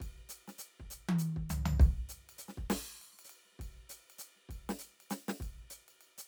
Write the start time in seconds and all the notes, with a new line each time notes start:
0.01 kick, ride
0.20 snare
0.30 hi-hat pedal, ride
0.48 snare, ride
0.59 hi-hat pedal, ride
0.81 kick
0.91 hi-hat pedal, ride
1.09 high tom
1.19 hi-hat pedal, ride
1.37 kick
1.50 floor tom, hi-hat pedal
1.66 floor tom
1.80 kick, ride
2.10 hi-hat pedal, ride
2.30 ride
2.39 hi-hat pedal, ride
2.49 snare
2.58 kick
2.71 snare, crash
2.96 hi-hat pedal
3.02 ride
3.13 snare
3.20 ride
3.25 hi-hat pedal
3.30 ride
3.46 snare
3.53 snare
3.60 kick, ride
3.77 snare
3.90 hi-hat pedal, ride
4.11 ride
4.19 hi-hat pedal, ride
4.37 snare
4.50 kick, ride
4.70 snare
4.80 hi-hat pedal, ride
5.01 ride
5.11 snare, hi-hat pedal, ride
5.29 snare
5.41 kick, ride
5.63 snare
5.71 hi-hat pedal, ride
5.89 ride
6.02 ride
6.19 hi-hat pedal